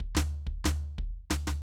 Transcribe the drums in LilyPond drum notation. \new DrumStaff \drummode { \time 4/4 \tempo 4 = 122 \tuplet 3/2 { bd8 <tomfh sn>8 r8 bd8 <tomfh sn>8 r8 bd8 r8 <tomfh sn>8 } <sn tomfh>4 | }